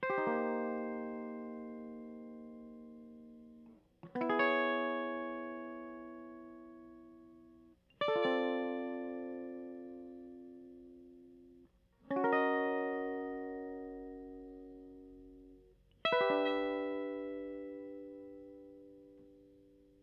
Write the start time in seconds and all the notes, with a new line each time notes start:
0.03 C5
0.10 G4
0.18 D#4
0.28 A#3
4.10 B3
4.16 B3
4.22 E4
4.30 G#4
4.40 C#5
8.02 D5
8.09 A4
8.16 F4
8.26 C4
12.11 C#4
12.17 F#4
12.25 A#4
12.33 D#5
16.04 D4 G4 B4 E5